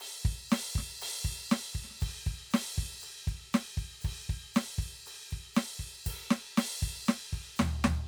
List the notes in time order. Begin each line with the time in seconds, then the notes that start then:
0.00 crash
0.25 kick
0.49 snare, hi-hat pedal, crash
0.74 kick, snare, hi-hat pedal
0.99 hi-hat pedal, crash
1.24 kick, crash
1.49 snare, hi-hat pedal, crash
1.75 kick, crash
1.84 snare
1.90 snare
1.94 snare
2.00 kick, hi-hat pedal, crash
2.21 hi-hat pedal
2.26 kick, crash
2.51 snare, hi-hat pedal, crash
2.74 kick, hi-hat pedal, crash
2.82 snare
2.86 snare
2.93 snare
3.00 hi-hat pedal, crash
3.23 hi-hat pedal
3.27 kick, crash
3.53 snare, hi-hat pedal, crash
3.77 kick, crash
4.01 kick, hi-hat pedal
4.05 crash
4.29 kick, crash
4.54 snare, hi-hat pedal, crash
4.78 kick
4.82 crash
5.06 hi-hat pedal, crash
5.31 kick, crash
5.54 snare, hi-hat pedal, crash
5.79 kick, crash
6.04 kick, hi-hat pedal, crash
6.31 snare, crash
6.57 snare, hi-hat pedal, crash
6.82 kick, crash
7.05 snare, hi-hat pedal
7.10 crash
7.33 kick, crash
7.56 snare, floor tom, hi-hat pedal
7.84 kick, snare, floor tom